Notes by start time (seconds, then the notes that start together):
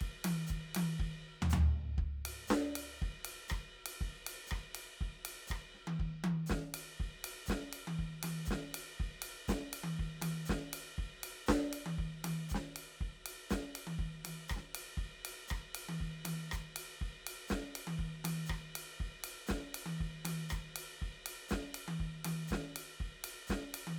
0.01 kick, ride
0.25 high tom, ride
0.47 kick, hi-hat pedal
0.75 high tom, ride
1.00 kick
1.42 floor tom
1.50 floor tom, hi-hat pedal
1.98 kick
2.25 ride
2.48 kick, snare, hi-hat pedal
2.76 ride
2.97 hi-hat pedal
3.02 kick
3.25 ride
3.48 kick, cross-stick, hi-hat pedal
3.86 ride
4.01 kick
4.27 ride
4.47 cross-stick, hi-hat pedal
4.52 kick
4.75 ride
5.01 kick
5.25 ride
5.47 kick, hi-hat pedal
5.51 cross-stick
5.74 snare
5.87 high tom
6.00 kick
6.24 high tom
6.46 snare, hi-hat pedal
6.51 kick
6.74 ride
7.00 kick
7.24 ride
7.46 kick, snare, hi-hat pedal
7.73 ride
7.88 high tom
7.99 kick
8.23 high tom, ride
8.46 kick, hi-hat pedal
8.51 snare
8.75 ride
9.00 kick
9.22 ride
9.48 kick, snare, hi-hat pedal
9.73 ride
9.84 high tom
9.99 kick
10.22 closed hi-hat, high tom, ride
10.46 kick, hi-hat pedal
10.50 snare
10.73 ride
10.98 kick
11.24 ride
11.47 kick, snare, hi-hat pedal
11.73 ride
11.86 high tom
11.98 kick
12.24 closed hi-hat, high tom, ride
12.49 kick, hi-hat pedal
12.55 snare
12.76 ride
13.01 kick
13.26 ride
13.50 kick, snare, hi-hat pedal
13.75 ride
13.87 closed hi-hat, high tom
13.99 kick
14.25 closed hi-hat, high tom, ride
14.49 kick, cross-stick, hi-hat pedal
14.56 snare
14.75 ride
14.97 kick
15.25 ride
15.48 kick, cross-stick, hi-hat pedal
15.75 ride
15.89 high tom
16.01 kick
16.25 closed hi-hat, high tom, ride
16.52 kick, cross-stick, hi-hat pedal
16.76 ride
17.01 kick
17.27 ride
17.48 kick, snare, hi-hat pedal
17.76 ride
17.87 closed hi-hat, high tom
17.99 kick
18.25 high tom, ride
18.46 kick, cross-stick, hi-hat pedal
18.76 ride
19.00 kick
19.24 ride
19.47 kick, snare, hi-hat pedal
19.57 snare
19.75 ride
19.86 high tom
20.01 kick
20.25 high tom, ride
20.50 kick, cross-stick, hi-hat pedal
20.76 ride
21.02 kick
21.26 ride
21.49 kick, snare, hi-hat pedal
21.75 ride
21.88 open hi-hat, high tom
22.00 kick
22.25 closed hi-hat, high tom, ride
22.48 kick, hi-hat pedal
22.52 snare
22.76 ride
23.00 kick
23.24 ride
23.47 kick, snare, hi-hat pedal
23.74 ride
23.87 closed hi-hat, high tom